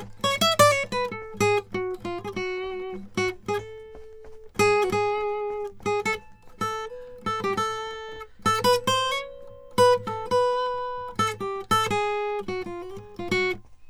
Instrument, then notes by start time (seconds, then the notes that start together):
acoustic guitar
0.25 C#5
0.42 E5
0.60 D5
0.72 C#5
0.93 B4
1.13 A4
1.41 G#4
1.75 F#4
2.06 F4
2.25 G4
2.37 F#4
3.18 F#4
3.49 G#4
3.59 A4
4.60 G#4
4.83 F#4
4.94 G#4
5.87 G#4
6.06 A4
6.62 A4
6.86 B4
7.27 A4
7.45 G4
7.58 A4
8.46 A4
8.65 B4
8.88 C5
9.12 C#5
9.79 B4
10.07 A4
10.32 B4
11.20 A4
11.41 G4
11.72 A4
11.91 G#4
12.49 F#4
12.63 F4
12.83 F#4
12.97 G#4
13.20 F4
13.32 F#4